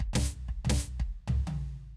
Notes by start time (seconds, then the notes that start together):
0.00 kick
0.13 snare, floor tom
0.48 kick
0.65 floor tom
0.69 snare
0.99 kick
1.27 floor tom
1.47 high tom